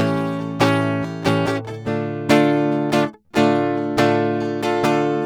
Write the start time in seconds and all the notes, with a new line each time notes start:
0.00 A2 E3 C#4 G4
0.20 A2 E3
0.39 G4 A4
0.44 A2 E3
0.62 A2 E3 C#4 G4 A4
0.81 A2 G4 A4
0.86 E3
1.04 A2 E3 C#4
1.27 A2 E3 C#4 G4 A4
1.47 A2 E3 C#4 G4 A4
1.67 E4 A4
1.73 A2 D3
1.88 A2 D3 A3 D4 F4
2.31 D3 A3 D4 F4 A4
2.74 D4 F4 A4
2.95 A2 D3 A3 D4 F4 A4
3.36 A2 D3 A3 D4 F4
3.78 D4 F4 A4
4.00 A2 D3 A3 D4 F4 A4
4.42 F4 A4
4.65 D3 A3 D4 F4 A4
4.86 D3 A3 D4 F4 A4